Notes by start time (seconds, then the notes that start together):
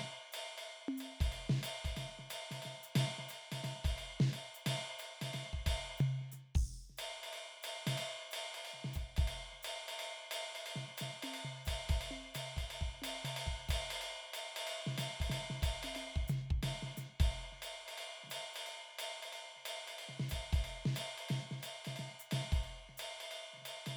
0.32 hi-hat pedal, ride
0.58 ride
0.88 high tom
0.98 hi-hat pedal, ride
1.21 kick, ride
1.32 ride
1.50 snare
1.63 hi-hat pedal, ride
1.85 kick, ride
1.97 snare, ride
2.19 snare
2.30 hi-hat pedal, ride
2.51 snare, ride
2.62 snare, ride
2.83 hi-hat pedal
2.96 snare, ride
3.19 snare
3.29 hi-hat pedal, ride
3.52 snare, ride
3.64 snare, ride
3.85 kick, ride
3.98 ride
4.20 snare
4.33 ride
4.55 hi-hat pedal
4.66 snare, ride
4.99 hi-hat pedal, ride
5.22 snare, ride
5.34 snare, ride
5.53 kick
5.66 kick, ride
5.90 snare
5.97 floor tom, hi-hat pedal
6.22 snare
6.32 snare, hi-hat pedal
6.55 kick, crash
6.90 snare
6.98 hi-hat pedal, ride
7.23 ride
7.33 ride
7.63 hi-hat pedal, ride
7.87 snare, ride
7.98 ride
8.31 hi-hat pedal, ride
8.55 ride
8.65 ride
8.70 snare, hi-hat pedal
8.85 snare
8.93 kick, hi-hat pedal, ride
9.17 kick, ride
9.28 ride
9.53 snare
9.63 hi-hat pedal, ride
9.88 ride
9.99 ride
10.31 hi-hat pedal, ride
10.55 ride
10.66 ride
10.76 snare
10.98 snare, hi-hat pedal, ride
11.23 high tom, ride
11.34 ride
11.45 floor tom
11.65 kick, hi-hat pedal, ride
11.89 kick, ride
12.01 ride
12.11 high tom
12.35 floor tom, hi-hat pedal, ride
12.57 kick, ride
12.70 ride
12.81 kick
13.02 hi-hat pedal, high tom, ride
13.25 floor tom, ride
13.37 ride
13.47 kick
13.69 kick, hi-hat pedal, ride
13.91 ride
14.01 ride
14.34 hi-hat pedal, ride
14.56 ride
14.67 ride
14.87 snare
14.98 snare, hi-hat pedal, ride
15.20 kick, ride
15.30 snare, ride
15.50 snare
15.63 kick, hi-hat pedal, ride
15.83 high tom, ride
15.95 high tom, ride
16.16 kick
16.28 snare, floor tom, hi-hat pedal
16.51 kick
16.63 snare, ride
16.83 snare
16.97 snare, hi-hat pedal
17.20 kick, ride
17.52 snare
17.62 hi-hat pedal, ride
17.88 ride
17.98 ride
18.24 snare
18.27 snare
18.29 snare, hi-hat pedal, ride
18.54 hi-hat pedal, ride
18.66 ride
18.99 hi-hat pedal, ride
19.23 ride
19.33 ride
19.56 snare
19.65 hi-hat pedal, ride
19.86 hi-hat pedal, ride
19.99 ride
20.09 snare
20.20 snare
20.29 kick, hi-hat pedal, ride
20.53 kick, ride
20.64 ride
20.86 snare
20.96 hi-hat pedal, ride
21.18 ride
21.29 snare, ride
21.51 snare
21.63 hi-hat pedal, ride
21.85 snare, ride
21.96 snare, ride
22.20 hi-hat pedal
22.31 snare, ride
22.52 kick, ride
22.64 ride
22.89 snare
22.97 hi-hat pedal, ride
23.20 ride
23.31 ride
23.54 snare
23.57 snare
23.62 snare, hi-hat pedal, ride
23.86 snare, ride